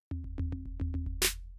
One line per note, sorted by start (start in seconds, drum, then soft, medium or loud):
0.11 floor tom medium
0.11 high tom medium
0.24 kick soft
0.38 floor tom loud
0.38 high tom medium
0.52 floor tom medium
0.52 high tom medium
0.66 kick soft
0.80 floor tom loud
0.80 high tom medium
0.94 floor tom medium
0.94 high tom medium
1.06 kick soft
1.22 snare loud
1.24 snare loud